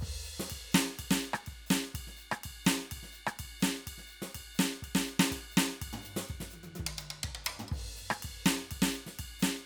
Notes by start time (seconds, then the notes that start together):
0.01 kick, crash
0.09 kick
0.15 kick
0.25 hi-hat pedal
0.40 snare
0.51 kick, ride bell
0.72 snare, hi-hat pedal
0.99 kick, ride bell
1.11 snare
1.20 hi-hat pedal
1.24 ride
1.34 cross-stick
1.47 kick, ride bell
1.67 hi-hat pedal
1.71 snare
1.95 kick, ride bell
2.08 snare
2.17 hi-hat pedal
2.22 ride
2.32 cross-stick
2.44 kick, ride bell
2.65 snare, hi-hat pedal
2.92 kick, ride bell
2.98 kick
3.04 snare
3.13 hi-hat pedal, ride
3.27 cross-stick
3.40 kick, ride bell
3.60 snare, hi-hat pedal
3.88 kick, ride bell
3.93 kick
3.98 snare
4.08 hi-hat pedal
4.13 ride
4.22 snare
4.35 kick, ride bell
4.41 kick
4.55 hi-hat pedal
4.60 snare
4.83 kick, ride bell
4.89 kick
4.96 snare
5.04 hi-hat pedal
5.08 ride
5.20 snare
5.32 kick, ride bell
5.38 kick
5.52 hi-hat pedal
5.58 snare
5.82 kick, ride bell
5.88 kick
5.94 floor tom
6.02 hi-hat pedal, ride
6.17 snare
6.29 kick, ride bell
6.37 kick, snare
6.51 hi-hat pedal, high tom
6.76 high tom
6.80 kick
6.87 kick, high tom
6.98 hi-hat pedal, high tom
7.11 high tom
7.24 kick, mid tom
7.31 kick
7.35 mid tom
7.45 hi-hat pedal, floor tom
7.60 floor tom
7.69 kick, floor tom
7.73 crash
7.87 kick
7.97 hi-hat pedal
8.11 cross-stick
8.20 hi-hat pedal, ride bell
8.25 kick
8.31 kick
8.46 snare, hi-hat pedal
8.71 kick, ride bell
8.83 snare
8.93 hi-hat pedal, ride
9.07 snare
9.20 kick, ride bell
9.26 kick
9.40 snare, hi-hat pedal